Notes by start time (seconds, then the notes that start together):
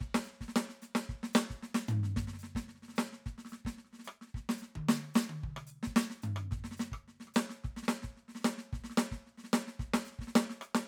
0.01 kick, snare
0.08 kick
0.15 snare
0.25 snare, hi-hat pedal
0.34 snare
0.39 kick, snare
0.41 snare
0.49 snare
0.56 snare
0.70 snare
0.82 snare, hi-hat pedal
0.96 snare
1.10 kick, snare
1.16 kick
1.24 snare
1.34 snare, hi-hat pedal
1.50 kick, snare
1.63 snare
1.75 snare
1.88 floor tom, hi-hat pedal
2.04 snare
2.17 kick, snare
2.24 kick
2.28 snare
2.34 snare
2.39 hi-hat pedal
2.44 snare
2.56 kick, snare
2.61 kick
2.69 snare
2.76 snare
2.82 snare
2.89 snare
2.94 snare, hi-hat pedal
2.99 snare
3.13 snare
3.26 kick, snare
3.33 kick
3.39 snare
3.45 snare, hi-hat pedal
3.53 snare
3.66 kick, snare
3.78 snare
3.85 snare
3.91 snare
3.93 snare
3.99 snare
4.05 cross-stick, snare, hi-hat pedal
4.22 snare
4.27 snare
4.35 kick, snare
4.41 kick
4.50 snare
4.58 hi-hat pedal
4.62 snare
4.76 kick, high tom
4.89 snare
5.04 high tom
5.15 snare, hi-hat pedal
5.30 high tom
5.44 kick, mid tom
5.50 kick
5.57 cross-stick
5.67 hi-hat pedal
5.83 snare
5.88 kick
5.97 snare
6.11 snare
6.23 floor tom, hi-hat pedal
6.37 cross-stick
6.52 kick, snare
6.59 kick
6.65 snare
6.72 snare
6.78 snare, hi-hat pedal
6.92 kick, cross-stick
7.08 snare
7.14 snare
7.21 snare
7.28 cross-stick
7.35 snare, hi-hat pedal
7.50 snare
7.64 kick, snare
7.71 kick
7.77 snare
7.83 snare
7.89 snare, hi-hat pedal
8.03 kick, snare
8.10 kick
8.17 snare
8.23 snare
8.28 snare
8.36 snare
8.41 snare
8.45 snare, hi-hat pedal
8.58 snare
8.73 kick, snare
8.80 kick
8.84 snare
8.90 snare
8.98 snare, hi-hat pedal
9.12 kick, snare
9.27 snare
9.34 snare
9.38 snare
9.44 snare
9.54 snare, hi-hat pedal
9.68 snare
9.80 kick, snare
9.86 kick
9.94 snare
9.99 cross-stick
10.05 snare, hi-hat pedal
10.13 snare
10.19 kick, snare
10.21 kick, snare
10.28 snare
10.36 snare
10.50 snare
10.62 cross-stick, hi-hat pedal
10.75 snare